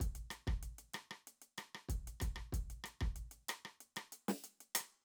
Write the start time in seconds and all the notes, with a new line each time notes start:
0.01 kick, closed hi-hat
0.16 closed hi-hat
0.31 cross-stick, closed hi-hat
0.48 kick, cross-stick
0.64 closed hi-hat
0.79 closed hi-hat
0.94 cross-stick, closed hi-hat
1.12 cross-stick
1.28 closed hi-hat
1.43 closed hi-hat
1.59 cross-stick, closed hi-hat
1.76 cross-stick
1.89 kick, closed hi-hat
2.08 closed hi-hat
2.21 kick, cross-stick, closed hi-hat
2.37 cross-stick
2.53 kick, closed hi-hat
2.71 closed hi-hat
2.85 cross-stick, closed hi-hat
3.02 kick, cross-stick
3.17 closed hi-hat
3.32 closed hi-hat
3.49 cross-stick, closed hi-hat
3.66 cross-stick
3.81 closed hi-hat
3.97 cross-stick, closed hi-hat
4.13 closed hi-hat
4.29 snare
4.45 closed hi-hat
4.61 closed hi-hat
4.76 cross-stick, open hi-hat
4.81 cross-stick